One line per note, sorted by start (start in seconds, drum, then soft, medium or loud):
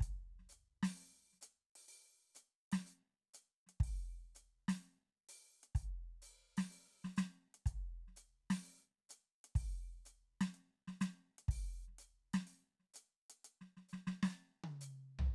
0.01 kick soft
0.01 open hi-hat medium
0.40 snare soft
0.50 closed hi-hat soft
0.50 hi-hat pedal soft
0.83 snare medium
0.83 open hi-hat medium
0.98 open hi-hat soft
1.34 snare soft
1.42 closed hi-hat medium
1.42 hi-hat pedal soft
1.76 open hi-hat medium
1.89 open hi-hat medium
2.36 closed hi-hat soft
2.36 hi-hat pedal soft
2.73 snare medium
2.73 open hi-hat medium
2.87 open hi-hat soft
3.35 closed hi-hat medium
3.35 hi-hat pedal soft
3.67 snare soft
3.67 closed hi-hat soft
3.81 kick soft
3.81 open hi-hat soft
4.36 closed hi-hat soft
4.36 hi-hat pedal soft
4.69 snare medium
4.69 open hi-hat medium
4.83 open hi-hat soft
5.30 hi-hat pedal soft
5.30 open hi-hat medium
5.64 closed hi-hat soft
5.76 kick soft
5.76 open hi-hat soft
6.23 hi-hat pedal soft
6.58 snare medium
6.58 open hi-hat medium
6.71 open hi-hat soft
7.05 snare soft
7.17 snare medium
7.17 closed hi-hat medium
7.17 hi-hat pedal soft
7.55 closed hi-hat soft
7.67 kick soft
7.67 open hi-hat medium
8.08 snare soft
8.17 closed hi-hat soft
8.17 hi-hat pedal soft
8.51 snare medium
8.51 open hi-hat medium
8.64 open hi-hat soft
9.10 closed hi-hat medium
9.10 hi-hat pedal soft
9.45 closed hi-hat soft
9.56 kick soft
9.56 open hi-hat soft
10.06 closed hi-hat soft
10.06 hi-hat pedal soft
10.42 snare medium
10.42 open hi-hat medium
10.55 open hi-hat soft
10.88 snare soft
11.01 snare medium
11.01 closed hi-hat medium
11.01 hi-hat pedal soft
11.39 closed hi-hat soft
11.49 kick soft
11.49 open hi-hat medium
11.88 snare soft
11.99 hi-hat pedal soft
11.99 open hi-hat soft
12.34 snare medium
12.34 open hi-hat medium
12.48 open hi-hat soft
12.80 snare soft
12.95 closed hi-hat medium
12.95 hi-hat pedal soft
13.31 closed hi-hat medium
13.45 open hi-hat medium
13.62 snare soft
13.78 snare soft
13.89 hi-hat pedal soft
13.94 snare soft
14.08 snare soft
14.23 snare medium
14.64 high tom medium
14.82 hi-hat pedal medium
15.20 floor tom medium